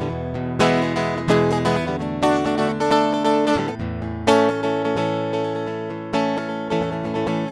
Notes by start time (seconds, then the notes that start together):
0.00 A2 D3 G3 B3 E4
0.11 E2 B2 E3 G#3
0.36 E2 B2 E3
0.61 B2 E3 G#3 B3 E4
0.82 G#3 B3 E4
0.98 E3 G#3 B3 E4
1.21 E3
1.30 E2 B2 E3 G#3 G#4
1.53 G#3 B3 G#4
1.67 E3 G#3 B3 E4
1.78 G3 B3 E4
1.88 D3 G3 B3 E4
2.00 D3 A3 F#4
2.04 D4
2.24 A3 D4 F#4
2.46 A3 D4 F#4
2.60 D3 A3 D4 F#4
2.70 D4
2.82 A3 D4 A4
2.93 A3 D4 A4
3.14 D4 A4
3.26 D3 A3 D4 A4
3.49 A3 D4 A4
3.58 A2 D3 G3 B3 A4
3.71 C#4 A4
3.81 E2 A2 E3
4.04 A2 E3 A3
4.29 A3 C#4 A4
4.51 A3 C#4 A4
4.66 E3 A3 C#4 A4
4.87 E3 A3 C#4 A4
4.98 A2 E3 A3 C#4 A4
5.35 A3 C#4 A4
5.56 A3 A4
5.68 E3 A3 C#4
5.92 E3 A3
6.15 E3 A3 C#4 A4
6.38 E3 A3 C#4 A4
6.50 A3 C#4 A4
6.72 A2 E3 A3 C#4 A4
6.83 A2 E3 A3 C#4
6.93 E3 A3 C#4 A4
7.06 A2 E3 A3 C#4
7.16 A2 E3 A3 C#4 A4
7.28 A2 E3 A3 C#4 A4